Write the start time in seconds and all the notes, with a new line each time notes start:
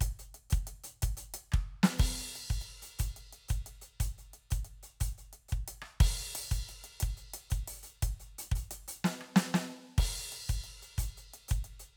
0.01 kick, closed hi-hat
0.19 open hi-hat
0.35 closed hi-hat
0.50 closed hi-hat, kick
0.67 closed hi-hat
0.84 open hi-hat
1.03 kick, closed hi-hat
1.17 closed hi-hat
1.34 closed hi-hat
1.52 kick, cross-stick
1.83 snare
1.99 kick, crash
2.36 open hi-hat
2.50 open hi-hat, kick
2.62 open hi-hat
2.83 open hi-hat
2.99 closed hi-hat, kick
3.17 open hi-hat
3.33 closed hi-hat
3.49 closed hi-hat, kick
3.66 closed hi-hat
3.82 closed hi-hat
4.00 closed hi-hat, kick
4.18 open hi-hat
4.34 closed hi-hat
4.51 closed hi-hat, kick
4.65 closed hi-hat
4.83 open hi-hat
5.01 open hi-hat, kick
5.18 open hi-hat
5.33 closed hi-hat
5.49 open hi-hat, kick
5.68 closed hi-hat
5.82 cross-stick
6.01 kick, crash
6.35 open hi-hat
6.51 open hi-hat, kick
6.69 open hi-hat
6.84 closed hi-hat
7.00 kick, closed hi-hat
7.17 closed hi-hat
7.34 closed hi-hat
7.50 closed hi-hat, kick
7.68 open hi-hat
7.83 open hi-hat
8.03 kick, closed hi-hat
8.20 open hi-hat
8.39 closed hi-hat
8.52 open hi-hat, kick
8.57 kick
8.71 open hi-hat
8.88 open hi-hat
9.05 snare
9.21 cross-stick
9.36 snare
9.54 snare
9.98 kick, crash
10.32 closed hi-hat
10.49 closed hi-hat, kick
10.64 closed hi-hat
10.82 closed hi-hat
10.98 closed hi-hat, kick
11.18 closed hi-hat
11.34 closed hi-hat
11.49 closed hi-hat, kick
11.65 closed hi-hat
11.80 closed hi-hat